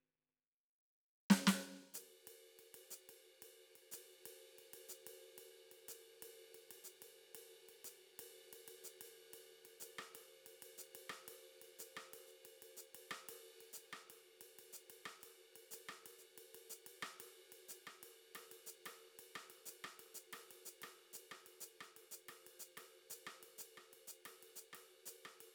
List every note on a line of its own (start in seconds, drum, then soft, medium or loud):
1.30 snare loud
1.47 snare loud
1.94 hi-hat pedal medium
1.94 ride medium
2.27 ride medium
2.59 ride soft
2.74 ride medium
2.91 hi-hat pedal medium
3.09 ride soft
3.42 ride medium
3.75 ride soft
3.91 hi-hat pedal medium
3.91 ride medium
4.11 hi-hat pedal soft
4.26 ride medium
4.58 ride soft
4.73 ride medium
4.89 hi-hat pedal medium
5.07 ride medium
5.38 ride medium
5.71 ride soft
5.88 hi-hat pedal medium
5.88 ride medium
6.22 ride medium
6.54 ride soft
6.71 ride medium
6.84 hi-hat pedal medium
7.02 ride medium
7.35 ride medium
7.69 ride soft
7.84 hi-hat pedal medium
7.84 ride medium
8.19 ride medium
8.53 ride medium
8.68 ride medium
8.84 hi-hat pedal medium
9.01 hi-hat pedal soft
9.01 ride medium
9.33 ride medium
9.65 ride soft
9.80 hi-hat pedal medium
9.80 ride medium
9.98 cross-stick medium
10.15 ride medium
10.46 ride soft
10.62 ride medium
10.78 hi-hat pedal medium
10.95 ride medium
11.09 cross-stick medium
11.28 ride medium
11.62 ride soft
11.79 hi-hat pedal medium
11.79 ride medium
11.97 cross-stick medium
12.13 ride medium
12.27 hi-hat pedal soft
12.45 ride soft
12.62 ride soft
12.77 hi-hat pedal medium
12.95 ride medium
13.11 cross-stick medium
13.29 ride medium
13.61 ride soft
13.73 hi-hat pedal medium
13.78 ride soft
13.93 cross-stick medium
14.10 ride soft
14.41 ride medium
14.59 ride soft
14.73 hi-hat pedal medium
14.90 ride medium
15.05 cross-stick medium
15.20 hi-hat pedal soft
15.20 ride medium
15.56 ride soft
15.71 hi-hat pedal medium
15.71 ride medium
15.89 cross-stick medium
16.06 ride medium
16.18 hi-hat pedal soft
16.38 ride medium
16.55 ride medium
16.70 hi-hat pedal medium
16.86 ride medium
17.02 cross-stick medium
17.20 ride medium
17.52 ride soft
17.69 hi-hat pedal medium
17.69 ride soft
17.87 cross-stick soft
18.03 ride medium
18.35 cross-stick soft
18.35 ride medium
18.51 ride soft
18.66 hi-hat pedal medium
18.86 cross-stick medium
18.86 ride medium
19.19 ride medium
19.35 cross-stick medium
19.50 ride soft
19.66 hi-hat pedal medium
19.66 ride soft
19.84 cross-stick medium
19.99 ride soft
20.14 hi-hat pedal medium
20.33 cross-stick medium
20.33 ride medium
20.37 hi-hat pedal soft
20.51 ride soft
20.65 hi-hat pedal medium
20.82 cross-stick soft
20.82 ride medium
21.13 hi-hat pedal medium
21.13 ride medium
21.31 cross-stick soft
21.46 ride soft
21.60 hi-hat pedal medium
21.60 ride soft
21.81 cross-stick soft
21.81 hi-hat pedal soft
21.96 ride soft
22.11 hi-hat pedal medium
22.28 cross-stick soft
22.28 ride soft
22.47 ride soft
22.59 hi-hat pedal medium
22.77 cross-stick soft
22.77 ride medium
23.10 hi-hat pedal medium
23.10 ride medium
23.27 cross-stick medium
23.43 ride soft
23.58 hi-hat pedal medium
23.58 ride soft
23.77 cross-stick soft
23.93 ride soft
24.07 hi-hat pedal medium
24.25 cross-stick soft
24.25 ride medium
24.43 ride soft
24.56 hi-hat pedal medium
24.73 cross-stick soft
24.73 ride medium
24.78 hi-hat pedal soft
25.06 hi-hat pedal medium
25.06 ride medium
25.25 cross-stick soft
25.40 ride soft